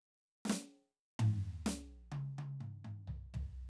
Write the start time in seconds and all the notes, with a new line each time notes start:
0.45 snare
0.50 snare
1.19 mid tom
1.66 snare
2.12 high tom
2.38 high tom
2.61 mid tom
2.85 mid tom
3.08 floor tom
3.34 floor tom